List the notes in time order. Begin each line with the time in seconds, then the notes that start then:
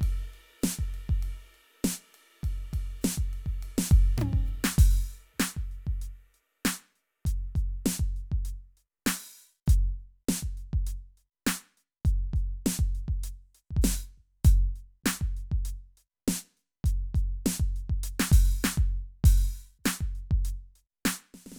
0.01 kick, ride
0.34 ride
0.62 snare, hi-hat pedal, ride
0.79 kick
0.94 ride
1.09 kick
1.23 ride
1.54 ride
1.83 snare, hi-hat pedal, ride
2.14 ride
2.43 kick, ride
2.73 kick, ride
3.01 snare, hi-hat pedal, ride
3.18 kick
3.33 ride
3.46 kick
3.60 hi-hat pedal, ride
3.78 snare
3.91 kick, ride
4.18 floor tom, hi-hat pedal, high tom
4.33 kick
4.45 hi-hat pedal
4.64 snare
4.78 open hi-hat, kick
5.34 kick
5.39 closed hi-hat, snare, hi-hat pedal
5.57 kick
5.71 closed hi-hat
5.87 kick
6.01 closed hi-hat
6.34 closed hi-hat
6.65 closed hi-hat, snare
6.95 closed hi-hat
7.25 closed hi-hat, kick
7.55 kick, closed hi-hat
7.86 closed hi-hat, snare
7.99 kick
8.16 closed hi-hat
8.32 kick
8.45 closed hi-hat
8.77 closed hi-hat
9.06 open hi-hat, snare
9.66 closed hi-hat, kick, hi-hat pedal
10.00 closed hi-hat
10.29 closed hi-hat, snare
10.43 kick
10.57 closed hi-hat
10.73 kick
10.87 closed hi-hat
11.17 closed hi-hat
11.46 closed hi-hat, snare
11.77 closed hi-hat
12.05 closed hi-hat, kick
12.33 kick, closed hi-hat
12.66 closed hi-hat, snare
12.79 kick
12.95 closed hi-hat
13.08 kick, crash
13.23 closed hi-hat
13.55 closed hi-hat
13.71 kick
13.77 kick
13.82 open hi-hat, snare, hi-hat pedal
14.18 kick
14.44 open hi-hat, kick, hi-hat pedal
14.76 closed hi-hat
15.04 closed hi-hat, kick, snare
15.21 kick
15.37 closed hi-hat
15.52 kick
15.65 closed hi-hat
15.97 closed hi-hat
16.28 closed hi-hat, snare
16.57 closed hi-hat
16.84 closed hi-hat, kick
17.14 kick, closed hi-hat
17.46 closed hi-hat, snare
17.60 kick
17.76 closed hi-hat
17.89 kick
18.03 closed hi-hat
18.20 snare
18.32 open hi-hat, kick
18.62 snare, hi-hat pedal
18.77 kick
19.24 open hi-hat, kick
19.79 kick
19.84 closed hi-hat, snare, hi-hat pedal
20.01 kick
20.15 closed hi-hat
20.31 kick
20.45 closed hi-hat
20.75 closed hi-hat
21.05 closed hi-hat, snare
21.34 snare, closed hi-hat
21.46 snare
21.52 snare